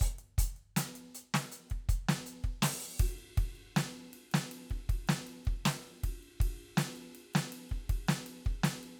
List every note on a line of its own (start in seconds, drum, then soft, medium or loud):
0.01 open hi-hat loud
0.01 kick medium
0.01 hi-hat pedal medium
0.19 closed hi-hat soft
0.38 closed hi-hat loud
0.38 kick medium
0.56 closed hi-hat soft
0.77 closed hi-hat loud
0.77 snare loud
0.95 closed hi-hat medium
1.15 closed hi-hat medium
1.34 snare loud
1.34 closed hi-hat soft
1.52 closed hi-hat medium
1.70 kick soft
1.70 closed hi-hat soft
1.89 closed hi-hat medium
1.89 kick medium
2.09 snare loud
2.09 closed hi-hat soft
2.26 closed hi-hat medium
2.44 kick medium
2.44 closed hi-hat soft
2.62 open hi-hat loud
2.62 snare loud
3.00 kick medium
3.00 ride loud
3.08 hi-hat pedal soft
3.19 ride soft
3.38 kick medium
3.38 ride medium
3.56 ride soft
3.76 snare loud
3.76 ride medium
4.13 ride medium
4.32 snare loud
4.32 ride soft
4.52 ride medium
4.70 kick soft
4.70 ride soft
4.89 kick medium
4.89 ride medium
5.08 snare loud
5.08 ride soft
5.27 ride soft
5.45 kick medium
5.45 ride soft
5.65 snare loud
5.65 ride medium
6.04 kick medium
6.04 ride medium
6.23 ride soft
6.40 kick medium
6.40 ride medium
6.59 ride soft
6.77 snare loud
6.77 ride medium
6.96 ride soft
7.15 ride soft
7.34 snare loud
7.34 ride soft
7.52 ride medium
7.70 kick soft
7.70 ride soft
7.90 kick medium
7.90 ride medium
8.08 snare loud
8.08 ride soft
8.26 ride medium
8.45 kick medium
8.45 ride soft
8.64 snare loud
8.64 ride medium
8.83 ride soft